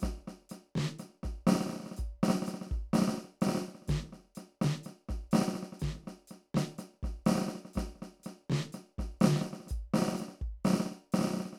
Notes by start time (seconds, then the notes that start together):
0.01 kick, snare, hi-hat pedal
0.11 snare
0.18 snare
0.23 snare
0.28 snare
0.39 snare
0.42 snare
0.50 snare, hi-hat pedal
0.76 snare
0.78 snare
0.99 snare, hi-hat pedal
1.10 snare
1.15 snare
1.24 kick, snare
1.47 snare, hi-hat pedal
1.49 snare
1.52 snare
1.56 snare
1.61 snare
1.67 snare
1.70 snare
1.73 snare
1.77 snare
1.81 snare
1.84 snare
1.92 snare
1.97 kick, snare, hi-hat pedal
2.24 snare
2.29 snare
2.30 snare
2.36 snare
2.43 snare
2.47 snare, hi-hat pedal
2.54 snare
2.61 snare
2.67 snare
2.72 kick, snare
2.94 snare, hi-hat pedal
2.96 snare
2.99 snare
3.02 snare
3.08 snare
3.14 snare
3.18 snare
3.25 snare
3.42 snare, hi-hat pedal
3.47 snare
3.49 snare
3.52 snare
3.55 snare
3.58 snare
3.62 snare
3.69 snare
3.75 snare
3.83 snare
3.88 kick, snare, hi-hat pedal
3.90 snare
4.04 snare
4.09 snare
4.13 snare
4.20 snare
4.25 snare
4.36 snare, hi-hat pedal
4.62 snare
4.65 snare
4.84 snare, hi-hat pedal
5.09 kick, snare
5.32 snare, hi-hat pedal
5.35 snare
5.39 snare
5.42 snare
5.49 snare
5.54 snare
5.56 snare
5.63 snare
5.73 snare
5.80 kick, snare, hi-hat pedal
5.96 snare
6.04 snare
6.08 snare
6.20 snare
6.28 snare, hi-hat pedal
6.55 snare
6.57 snare
6.79 snare, hi-hat pedal
6.92 snare
6.95 snare
7.03 kick, snare
7.26 snare, hi-hat pedal
7.29 snare
7.32 snare
7.36 snare
7.38 snare
7.42 snare
7.47 snare
7.49 snare
7.56 snare
7.66 snare
7.74 kick, snare, hi-hat pedal
7.78 snare
7.86 snare
7.96 snare
8.03 snare
8.20 snare, hi-hat pedal
8.27 snare
8.50 snare
8.53 snare
8.73 snare, hi-hat pedal
8.83 snare
8.89 snare
8.99 kick, snare
9.21 snare, hi-hat pedal
9.24 snare
9.26 snare
9.31 snare
9.37 snare
9.42 snare
9.46 snare
9.54 snare
9.61 snare
9.67 snare, hi-hat pedal
9.71 kick
9.94 snare
9.96 snare
9.99 snare
10.03 snare
10.05 snare
10.09 snare
10.13 snare
10.15 snare, hi-hat pedal
10.20 snare
10.22 snare
10.29 snare
10.35 snare
10.40 kick, snare
10.65 snare, hi-hat pedal
10.68 snare
10.71 snare
10.74 snare
10.76 snare
10.81 snare
10.87 snare
10.92 snare
11.13 snare, hi-hat pedal
11.19 snare
11.22 snare
11.25 snare
11.28 snare
11.31 snare
11.34 snare
11.37 snare
11.41 snare
11.46 snare
11.53 snare